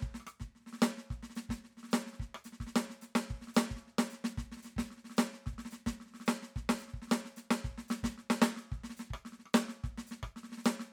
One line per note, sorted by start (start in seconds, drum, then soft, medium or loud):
0.01 kick soft
0.01 snare soft
0.09 kick soft
0.15 snare soft
0.20 cross-stick soft
0.27 cross-stick medium
0.27 hi-hat pedal soft
0.40 kick soft
0.40 snare soft
0.56 snare soft
0.60 snare soft
0.65 snare soft
0.67 snare soft
0.73 snare soft
0.79 snare soft
0.82 snare loud
0.82 hi-hat pedal soft
0.98 snare soft
1.11 kick soft
1.11 snare soft
1.23 snare soft
1.30 snare soft
1.36 snare medium
1.36 hi-hat pedal soft
1.50 kick soft
1.50 snare medium
1.64 snare soft
1.71 snare soft
1.75 snare soft
1.78 snare soft
1.84 snare soft
1.89 snare soft
1.89 hi-hat pedal soft
1.94 snare loud
2.07 snare soft
2.14 snare soft
2.20 kick soft
2.20 snare soft
2.35 cross-stick medium
2.45 snare soft
2.45 hi-hat pedal soft
2.53 snare soft
2.61 kick soft
2.61 snare soft
2.67 snare soft
2.76 snare loud
2.90 snare soft
3.02 snare soft
3.02 hi-hat pedal soft
3.16 snare loud
3.29 kick soft
3.29 snare soft
3.34 snare soft
3.38 kick soft
3.38 snare soft
3.42 snare soft
3.48 snare soft
3.55 snare loud
3.55 hi-hat pedal soft
3.70 kick soft
3.70 snare soft
3.76 snare soft
3.88 snare soft
3.99 snare loud
4.10 snare soft
4.10 hi-hat pedal soft
4.25 snare medium
4.38 kick soft
4.38 snare soft
4.44 kick soft
4.52 snare soft
4.57 snare soft
4.63 snare soft
4.63 hi-hat pedal soft
4.65 snare soft
4.77 kick soft
4.77 snare medium
4.82 kick soft
4.91 snare soft
4.97 snare soft
5.04 snare soft
5.10 snare soft
5.15 snare soft
5.15 hi-hat pedal medium
5.19 snare loud
5.34 snare soft
5.46 kick soft
5.46 snare soft
5.54 kick soft
5.59 snare soft
5.65 snare soft
5.71 snare soft
5.71 hi-hat pedal soft
5.87 kick soft
5.87 snare medium
6.01 snare soft
6.06 snare soft
6.11 snare soft
6.14 snare soft
6.21 snare soft
6.27 snare loud
6.27 hi-hat pedal medium
6.43 snare soft
6.56 kick soft
6.56 snare soft
6.70 snare loud
6.79 snare soft
6.79 hi-hat pedal soft
6.88 snare soft
6.94 kick soft
6.94 snare soft
7.02 snare soft
7.08 snare soft
7.12 snare loud
7.25 snare soft
7.37 snare soft
7.37 hi-hat pedal soft
7.51 snare loud
7.65 kick soft
7.65 snare soft
7.71 kick soft
7.78 snare soft
7.89 snare medium
7.89 hi-hat pedal soft
8.04 kick soft
8.04 snare medium
8.09 kick soft
8.18 snare soft
8.31 snare loud
8.42 snare loud
8.42 hi-hat pedal soft
8.57 snare soft
8.72 kick soft
8.72 snare soft
8.78 kick soft
8.84 snare soft
8.90 snare soft
8.97 snare soft
8.97 hi-hat pedal soft
9.11 kick soft
9.11 cross-stick medium
9.26 snare soft
9.33 snare soft
9.40 snare soft
9.46 cross-stick soft
9.54 snare loud
9.54 hi-hat pedal soft
9.69 snare soft
9.84 kick soft
9.84 snare soft
9.91 kick soft
9.98 snare medium
10.07 hi-hat pedal soft
10.12 snare soft
10.23 kick soft
10.23 cross-stick medium
10.37 snare soft
10.44 snare soft
10.49 snare soft
10.52 snare soft
10.58 snare soft
10.65 snare loud
10.65 hi-hat pedal soft
10.80 snare soft